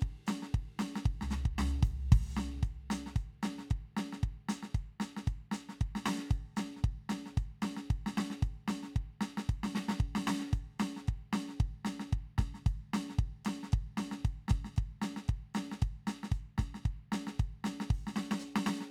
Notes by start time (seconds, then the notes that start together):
0.01 kick, ride
0.27 snare, hi-hat pedal, ride
0.42 snare
0.54 kick, ride
0.79 snare, hi-hat pedal, ride
0.96 snare
1.05 kick, ride
1.21 snare, floor tom
1.30 snare, floor tom, hi-hat pedal
1.45 kick
1.58 snare, floor tom
1.83 kick, hi-hat pedal, ride
2.12 open hi-hat, kick
2.37 open hi-hat, snare, hi-hat pedal
2.57 snare
2.63 kick, closed hi-hat
2.90 closed hi-hat, snare
3.06 snare
3.16 closed hi-hat, kick
3.43 closed hi-hat, snare
3.58 snare
3.70 kick, closed hi-hat
3.97 closed hi-hat, snare
4.13 snare
4.23 kick, closed hi-hat
4.49 closed hi-hat, snare
4.63 snare
4.74 kick, closed hi-hat
5.00 closed hi-hat, snare
5.17 snare
5.27 kick, closed hi-hat
5.51 closed hi-hat, snare
5.69 snare
5.81 kick, closed hi-hat
5.95 snare
6.06 snare
6.18 snare
6.31 closed hi-hat, kick
6.56 closed hi-hat, snare
6.76 snare
6.84 kick, closed hi-hat
7.09 snare, closed hi-hat
7.26 snare
7.37 closed hi-hat, kick
7.62 snare, closed hi-hat
7.77 snare
7.90 kick, closed hi-hat
8.06 snare
8.17 snare
8.30 snare
8.42 kick, closed hi-hat
8.68 closed hi-hat, snare
8.83 snare
8.96 kick, closed hi-hat
9.21 snare, closed hi-hat
9.37 snare
9.49 kick, closed hi-hat
9.63 snare
9.75 snare
9.88 snare
10.00 kick
10.15 snare
10.27 snare
10.39 snare
10.53 closed hi-hat, kick
10.79 closed hi-hat, snare
10.96 snare
11.08 kick, closed hi-hat
11.33 snare, closed hi-hat
11.49 snare
11.60 kick, closed hi-hat
11.85 closed hi-hat, snare
12.00 snare
12.12 kick, closed hi-hat
12.38 kick, snare, closed hi-hat
12.54 snare
12.66 kick, closed hi-hat
12.93 closed hi-hat, snare
13.09 snare
13.19 kick, closed hi-hat
13.45 snare, closed hi-hat
13.63 snare
13.72 kick, closed hi-hat
13.97 snare, closed hi-hat
14.11 snare
14.25 kick, closed hi-hat
14.48 kick, snare, closed hi-hat
14.65 snare
14.76 kick, closed hi-hat
15.02 closed hi-hat, snare
15.16 snare
15.28 kick, closed hi-hat
15.54 closed hi-hat, snare
15.72 snare
15.82 kick, closed hi-hat
16.07 closed hi-hat, snare
16.23 snare
16.32 closed hi-hat, kick
16.58 closed hi-hat, kick, snare
16.74 snare
16.85 kick, closed hi-hat
17.12 closed hi-hat, snare
17.27 snare
17.39 closed hi-hat, kick
17.64 closed hi-hat, snare
17.80 snare
17.90 open hi-hat, kick
18.07 snare
18.13 snare, hi-hat pedal
18.31 snare
18.39 hi-hat pedal
18.56 snare
18.66 snare
18.80 snare